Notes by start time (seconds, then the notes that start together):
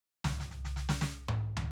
0.24 snare, floor tom
0.40 snare
0.51 snare
0.65 snare
0.76 snare
0.89 snare
1.01 snare
1.28 high tom
1.57 floor tom